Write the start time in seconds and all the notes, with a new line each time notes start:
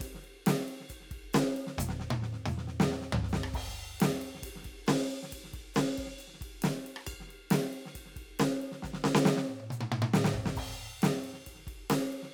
0.01 kick, hi-hat pedal, ride
0.15 snare
0.22 snare, ride
0.47 snare, hi-hat pedal, ride
0.69 ride
0.81 snare
0.90 kick, hi-hat pedal, ride
1.01 snare
1.12 kick, ride
1.34 snare, hi-hat pedal, ride
1.42 snare
1.57 ride
1.67 snare
1.78 kick, hi-hat pedal, mid tom
1.90 snare
2.00 snare
2.11 high tom
2.23 snare
2.33 snare
2.47 hi-hat pedal, mid tom
2.58 snare
2.68 snare
2.81 snare, hi-hat pedal
2.92 snare
3.02 snare
3.13 kick, floor tom
3.24 snare
3.29 hi-hat pedal
3.34 kick, snare
3.44 cross-stick
3.52 kick, hi-hat pedal, crash
3.68 kick, snare
3.74 snare
3.95 kick
4.01 snare, hi-hat pedal, ride
4.22 ride
4.35 snare
4.43 kick, hi-hat pedal, ride
4.49 kick
4.56 snare
4.62 kick, snare, ride
4.87 snare, hi-hat pedal, ride
5.11 ride
5.23 snare
5.32 kick, hi-hat pedal, ride
5.45 snare
5.52 kick, snare, ride
5.75 snare, hi-hat pedal, ride
5.98 kick, ride
6.05 kick, snare
6.19 hi-hat pedal, ride
6.28 snare
6.34 snare
6.42 kick, ride
6.48 kick
6.63 snare, hi-hat pedal, ride
6.87 ride
6.97 cross-stick
7.07 kick, hi-hat pedal, ride bell
7.14 kick
7.21 snare
7.28 snare, ride
7.51 snare, hi-hat pedal, ride
7.74 ride
7.86 snare
7.96 kick, hi-hat pedal, ride
8.06 snare
8.14 kick, snare
8.18 ride
8.40 snare, hi-hat pedal, ride
8.62 ride
8.72 snare
8.83 kick, snare, hi-hat pedal
8.90 kick
8.94 snare
9.05 snare
9.16 snare
9.26 snare
9.31 hi-hat pedal
9.38 snare
9.50 high tom
9.61 high tom
9.71 hi-hat pedal, high tom
9.81 high tom
9.93 high tom
10.03 high tom
10.14 snare, hi-hat pedal
10.25 snare
10.34 kick, mid tom
10.40 kick
10.47 snare
10.56 kick, hi-hat pedal, crash
10.64 kick
10.69 cross-stick, snare
11.03 snare, hi-hat pedal, ride
11.25 ride
11.34 snare
11.47 kick, hi-hat pedal, ride
11.56 snare
11.59 snare
11.68 kick, ride
11.73 kick
11.90 snare, hi-hat pedal, ride
12.00 snare
12.13 ride
12.23 snare